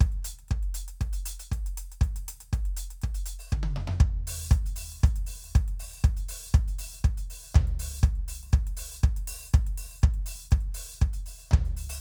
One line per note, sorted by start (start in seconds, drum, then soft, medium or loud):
0.01 kick loud
0.01 closed hi-hat soft
0.12 closed hi-hat soft
0.23 closed hi-hat loud
0.23 kick soft
0.39 closed hi-hat soft
0.49 kick loud
0.49 closed hi-hat soft
0.63 closed hi-hat soft
0.75 closed hi-hat loud
0.88 closed hi-hat medium
1.01 kick medium
1.01 closed hi-hat soft
1.13 closed hi-hat medium
1.26 closed hi-hat loud
1.40 closed hi-hat medium
1.52 kick medium
1.52 closed hi-hat medium
1.67 closed hi-hat medium
1.78 closed hi-hat loud
1.92 closed hi-hat medium
2.01 kick loud
2.01 closed hi-hat soft
2.16 closed hi-hat medium
2.29 closed hi-hat loud
2.41 closed hi-hat medium
2.53 kick loud
2.53 closed hi-hat soft
2.66 closed hi-hat soft
2.76 closed hi-hat loud
2.76 kick soft
2.91 closed hi-hat medium
3.02 kick medium
3.02 closed hi-hat medium
3.15 closed hi-hat medium
3.26 closed hi-hat loud
3.39 open hi-hat medium
3.49 kick loud
3.49 hi-hat pedal soft
3.49 high tom medium
3.63 high tom loud
3.76 mid tom loud
3.88 mid tom loud
4.00 kick loud
4.20 kick soft
4.28 open hi-hat loud
4.45 open hi-hat soft
4.49 kick loud
4.49 closed hi-hat medium
4.49 hi-hat pedal soft
4.66 closed hi-hat soft
4.76 open hi-hat loud
4.92 open hi-hat soft
5.00 kick loud
5.00 hi-hat pedal soft
5.05 closed hi-hat soft
5.16 closed hi-hat medium
5.27 open hi-hat medium
5.44 open hi-hat soft
5.51 hi-hat pedal soft
5.55 kick loud
5.55 closed hi-hat medium
5.68 closed hi-hat soft
5.80 open hi-hat loud
5.94 open hi-hat soft
6.00 kick loud
6.00 hi-hat pedal soft
6.05 closed hi-hat soft
6.17 closed hi-hat medium
6.29 open hi-hat loud
6.44 open hi-hat soft
6.50 hi-hat pedal soft
6.54 kick loud
6.54 closed hi-hat soft
6.68 closed hi-hat soft
6.79 open hi-hat loud
6.93 open hi-hat medium
6.99 hi-hat pedal soft
7.05 kick loud
7.05 closed hi-hat soft
7.18 closed hi-hat soft
7.30 open hi-hat medium
7.43 open hi-hat medium
7.52 kick loud
7.52 floor tom loud
7.52 hi-hat pedal soft
7.68 closed hi-hat soft
7.80 open hi-hat loud
7.94 open hi-hat soft
8.00 kick loud
8.00 hi-hat pedal soft
8.04 closed hi-hat soft
8.16 closed hi-hat soft
8.28 open hi-hat loud
8.43 open hi-hat soft
8.50 kick loud
8.50 closed hi-hat soft
8.50 hi-hat pedal soft
8.67 closed hi-hat soft
8.77 open hi-hat loud
8.93 open hi-hat soft
8.97 hi-hat pedal soft
9.04 kick loud
9.04 closed hi-hat soft
9.17 closed hi-hat medium
9.28 open hi-hat loud
9.43 hi-hat pedal soft
9.43 open hi-hat medium
9.54 kick loud
9.54 closed hi-hat medium
9.67 closed hi-hat soft
9.78 open hi-hat medium
9.92 open hi-hat soft
9.97 hi-hat pedal soft
10.03 kick loud
10.03 closed hi-hat soft
10.14 closed hi-hat soft
10.23 open hi-hat loud
10.23 kick soft
10.39 open hi-hat soft
10.45 hi-hat pedal soft
10.51 kick loud
10.51 closed hi-hat medium
10.61 closed hi-hat soft
10.72 open hi-hat loud
10.72 kick soft
10.87 open hi-hat soft
10.96 hi-hat pedal soft
11.01 kick loud
11.01 closed hi-hat soft
11.14 closed hi-hat soft
11.26 open hi-hat medium
11.39 open hi-hat medium
11.48 floor tom loud
11.48 hi-hat pedal soft
11.54 kick loud
11.65 closed hi-hat soft
11.74 open hi-hat medium
11.74 kick soft
11.90 open hi-hat loud
11.96 hi-hat pedal soft